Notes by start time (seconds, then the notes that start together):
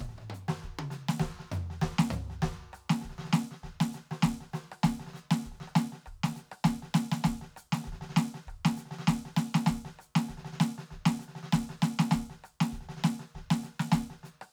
0.01 kick, snare, mid tom
0.10 kick, snare
0.15 snare
0.19 snare, mid tom
0.31 mid tom
0.35 hi-hat pedal, mid tom
0.50 snare
0.64 kick, snare
0.80 high tom
0.92 snare, hi-hat pedal
1.10 snare
1.21 kick, snare
1.28 kick
1.41 snare
1.53 floor tom, hi-hat pedal
1.71 snare
1.83 kick, snare
1.89 kick
2.00 snare
2.12 hi-hat pedal, floor tom
2.31 snare
2.43 kick, snare
2.50 kick
2.61 snare
2.74 cross-stick, hi-hat pedal
2.91 snare
3.03 kick, snare
3.11 snare
3.17 snare
3.20 snare
3.26 snare
3.30 snare
3.34 snare, hi-hat pedal
3.53 snare
3.65 kick, snare
3.82 snare
3.94 snare, hi-hat pedal
4.12 snare
4.24 kick, snare
4.42 snare
4.55 snare, hi-hat pedal
4.73 cross-stick
4.85 kick, snare
5.01 snare
5.08 snare
5.15 snare, hi-hat pedal
5.32 snare
5.45 kick, snare
5.53 snare
5.60 snare
5.62 snare
5.69 cross-stick
5.73 cross-stick
5.77 snare, hi-hat pedal
5.94 snare
6.07 kick, cross-stick
6.25 snare
6.37 snare, hi-hat pedal
6.53 cross-stick
6.66 kick, snare
6.84 snare
6.96 snare, hi-hat pedal
7.13 snare
7.25 kick, snare
7.43 snare
7.58 cross-stick, hi-hat pedal
7.74 snare
7.85 kick, snare
7.94 kick, snare
8.03 snare
8.11 snare
8.18 snare, hi-hat pedal
8.36 snare
8.48 kick, cross-stick
8.66 snare
8.78 snare, hi-hat pedal
8.87 snare
8.92 snare
9.00 snare
9.09 kick, snare
9.27 snare
9.38 snare, hi-hat pedal
9.56 snare
9.68 kick, snare
9.86 snare
10.00 cross-stick, hi-hat pedal
10.17 snare
10.30 kick, snare
10.39 snare
10.46 snare
10.54 snare
10.61 snare, hi-hat pedal
10.79 snare
10.92 kick, snare
11.07 snare
11.21 snare, hi-hat pedal
11.29 snare
11.37 snare
11.44 snare
11.54 kick, snare
11.71 snare
11.83 snare, hi-hat pedal
12.00 snare
12.13 kick, snare
12.31 snare
12.45 cross-stick, hi-hat pedal
12.62 snare
12.73 kick, snare
12.82 snare
12.90 snare
12.98 snare
13.05 snare, hi-hat pedal
13.21 snare
13.36 kick, snare
13.52 snare
13.64 snare, hi-hat pedal
13.81 snare
13.93 kick, snare
14.11 snare
14.25 snare, hi-hat pedal
14.43 cross-stick